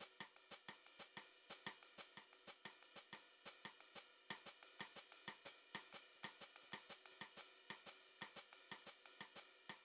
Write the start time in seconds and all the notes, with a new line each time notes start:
0.01 hi-hat pedal, ride
0.21 cross-stick, hi-hat pedal
0.37 ride
0.52 hi-hat pedal
0.69 cross-stick, ride
0.87 ride
1.00 hi-hat pedal
1.18 cross-stick, ride
1.51 hi-hat pedal, ride
1.67 cross-stick
1.83 ride
1.99 hi-hat pedal, ride
2.18 cross-stick
2.34 ride
2.48 hi-hat pedal
2.66 cross-stick, ride
2.83 ride
2.96 hi-hat pedal
3.14 cross-stick, ride
3.18 hi-hat pedal
3.46 hi-hat pedal, ride
3.66 cross-stick
3.81 ride
3.96 hi-hat pedal, ride
4.31 cross-stick, ride
4.47 hi-hat pedal
4.63 ride
4.80 cross-stick, ride
4.97 hi-hat pedal
5.13 ride
5.28 cross-stick
5.46 hi-hat pedal, ride
5.75 cross-stick, ride
5.93 hi-hat pedal, ride
6.15 hi-hat pedal
6.24 cross-stick, ride
6.41 hi-hat pedal
6.57 ride
6.63 hi-hat pedal
6.73 cross-stick, ride
6.90 hi-hat pedal
7.06 ride
7.12 hi-hat pedal
7.22 cross-stick
7.37 hi-hat pedal, ride
7.71 cross-stick, ride
7.87 hi-hat pedal, ride
8.09 hi-hat pedal
8.22 cross-stick, ride
8.37 hi-hat pedal
8.53 ride
8.72 cross-stick, ride
8.87 hi-hat pedal
9.06 ride
9.21 cross-stick
9.36 hi-hat pedal, ride
9.70 cross-stick, ride